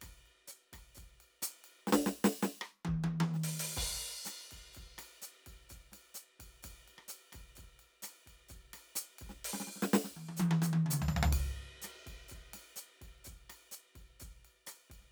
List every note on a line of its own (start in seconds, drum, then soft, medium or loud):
0.01 kick soft
0.01 cross-stick soft
0.01 snare soft
0.01 hi-hat pedal soft
0.01 ride medium
0.08 kick soft
0.26 ride soft
0.48 hi-hat pedal medium
0.48 ride soft
0.73 kick soft
0.73 cross-stick soft
0.73 snare soft
0.73 ride medium
0.95 kick soft
0.95 hi-hat pedal soft
0.95 ride soft
1.02 kick soft
1.20 ride soft
1.42 cross-stick soft
1.42 snare soft
1.42 hi-hat pedal loud
1.42 ride medium
1.64 ride medium
1.87 kick soft
1.87 snare medium
1.93 snare loud
2.06 snare medium
2.24 snare loud
2.43 snare loud
2.61 cross-stick medium
2.85 kick soft
2.85 high tom medium
2.94 kick soft
3.04 high tom medium
3.20 high tom loud
3.34 snare soft
3.44 closed hi-hat medium
3.60 closed hi-hat loud
3.77 kick medium
3.77 crash loud
4.25 cross-stick soft
4.25 snare soft
4.25 hi-hat pedal medium
4.25 ride medium
4.51 kick soft
4.51 ride soft
4.73 kick soft
4.73 hi-hat pedal soft
4.73 ride soft
4.82 kick soft
4.82 snare soft
4.98 cross-stick soft
4.98 snare soft
4.98 ride medium
5.22 hi-hat pedal medium
5.22 ride soft
5.46 kick soft
5.46 ride soft
5.69 kick soft
5.69 hi-hat pedal soft
5.69 ride soft
5.76 kick soft
5.92 snare soft
5.92 ride medium
6.14 hi-hat pedal medium
6.14 ride soft
6.40 kick soft
6.40 ride medium
6.63 kick soft
6.63 snare soft
6.63 hi-hat pedal soft
6.63 ride medium
6.69 kick soft
6.88 snare soft
6.88 ride soft
6.98 cross-stick soft
7.08 hi-hat pedal medium
7.08 ride medium
7.32 kick soft
7.32 cross-stick soft
7.32 ride medium
7.40 kick soft
7.55 kick soft
7.55 hi-hat pedal soft
7.55 ride soft
7.63 kick soft
7.79 ride soft
8.02 cross-stick soft
8.02 snare soft
8.02 hi-hat pedal medium
8.02 ride medium
8.26 kick soft
8.26 ride soft
8.49 kick soft
8.49 hi-hat pedal soft
8.49 ride soft
8.55 kick soft
8.74 cross-stick soft
8.74 ride medium
8.96 hi-hat pedal loud
8.96 ride medium
9.19 kick soft
9.19 ride medium
9.27 kick soft
9.27 snare soft
9.45 closed hi-hat loud
9.53 snare medium
9.60 snare soft
9.67 snare soft
9.76 snare soft
9.82 snare medium
9.94 snare loud
10.04 snare soft
10.10 kick soft
10.17 high tom soft
10.29 high tom medium
10.37 hi-hat pedal medium
10.37 high tom loud
10.51 high tom medium
10.62 hi-hat pedal loud
10.62 high tom loud
10.73 high tom medium
10.86 mid tom medium
10.90 hi-hat pedal loud
10.90 mid tom medium
11.02 floor tom medium
11.08 floor tom medium
11.17 floor tom medium
11.23 floor tom loud
11.32 kick medium
11.32 ride loud
11.82 cross-stick medium
11.82 snare soft
11.82 hi-hat pedal medium
11.82 ride soft
12.07 kick soft
12.07 ride soft
12.12 kick soft
12.29 kick soft
12.29 hi-hat pedal soft
12.29 ride soft
12.37 kick soft
12.54 snare soft
12.54 ride medium
12.76 hi-hat pedal medium
12.76 ride soft
13.01 kick soft
13.01 ride soft
13.24 kick soft
13.24 hi-hat pedal medium
13.24 ride soft
13.32 kick soft
13.49 cross-stick soft
13.49 snare soft
13.49 ride medium
13.71 hi-hat pedal medium
13.71 ride soft
13.95 kick soft
13.95 ride soft
14.20 kick soft
14.20 hi-hat pedal soft
14.20 ride soft
14.45 ride soft
14.67 cross-stick soft
14.67 snare soft
14.67 hi-hat pedal medium
14.67 ride medium
14.90 kick soft
14.90 ride soft
15.01 snare soft